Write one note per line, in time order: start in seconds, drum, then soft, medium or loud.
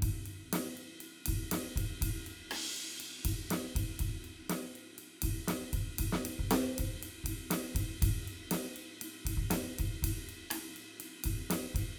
0.02 kick medium
0.02 ride loud
0.26 ride medium
0.53 snare medium
0.53 ride loud
0.77 ride soft
1.00 ride medium
1.26 kick medium
1.26 ride loud
1.51 snare medium
1.51 ride loud
1.76 kick medium
1.76 ride medium
2.01 kick medium
2.01 ride loud
2.26 ride medium
2.51 cross-stick medium
2.51 ride loud
2.76 ride soft
3.00 ride medium
3.25 kick medium
3.25 ride loud
3.50 snare medium
3.50 ride loud
3.75 kick medium
3.75 ride loud
3.99 kick medium
3.99 ride medium
4.24 ride soft
4.49 snare medium
4.49 ride loud
4.75 ride soft
4.98 ride medium
5.22 kick medium
5.22 ride loud
5.47 snare medium
5.47 ride loud
5.73 kick medium
5.73 ride medium
5.98 kick medium
5.98 ride loud
6.12 snare medium
6.25 ride loud
6.39 kick medium
6.51 snare medium
6.51 ride loud
6.78 kick medium
6.78 ride loud
7.03 ride medium
7.24 kick soft
7.24 ride loud
7.50 snare medium
7.50 ride loud
7.75 kick medium
7.75 ride loud
8.02 kick medium
8.02 ride loud
8.28 ride medium
8.51 snare loud
8.51 ride loud
8.76 ride medium
9.01 ride loud
9.25 kick medium
9.25 ride loud
9.37 kick medium
9.50 snare loud
9.50 ride loud
9.78 kick medium
9.78 ride medium
10.02 kick medium
10.02 ride loud
10.29 ride medium
10.50 cross-stick medium
10.50 ride loud
10.76 ride medium
11.00 ride medium
11.24 kick medium
11.24 ride loud
11.50 snare loud
11.50 ride loud
11.74 kick medium
11.74 ride medium